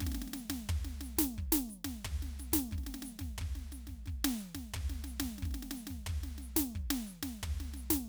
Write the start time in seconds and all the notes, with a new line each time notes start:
0.01 kick, snare
0.07 snare
0.12 snare
0.15 snare
0.28 snare
0.34 snare, hi-hat pedal
0.50 kick, snare
0.69 kick, floor tom
0.85 snare
1.01 snare, hi-hat pedal
1.17 kick, snare
1.37 kick, snare
1.53 snare
1.70 snare, hi-hat pedal
1.85 kick, snare
1.94 snare
2.05 kick, floor tom
2.23 snare
2.39 snare, hi-hat pedal
2.53 kick, snare
2.72 kick, snare
2.79 snare
2.84 snare
2.87 snare
2.95 snare
3.03 snare, hi-hat pedal
3.20 kick, snare
3.38 kick, floor tom
3.56 snare
3.72 snare, hi-hat pedal
3.87 kick, snare
4.06 kick, snare
4.25 snare
4.38 snare, hi-hat pedal
4.55 kick, snare
4.74 kick, floor tom
4.90 snare
5.04 snare, hi-hat pedal
5.20 kick, snare
5.39 snare
5.43 kick, snare
5.51 snare
5.55 snare
5.63 snare
5.71 snare
5.77 hi-hat pedal
5.87 kick, snare
6.07 kick, floor tom
6.24 snare
6.38 snare, hi-hat pedal
6.56 kick, snare
6.76 kick, snare
6.91 snare
7.07 snare, hi-hat pedal
7.23 kick, snare
7.43 kick, floor tom
7.61 snare
7.74 snare, hi-hat pedal
7.91 kick, snare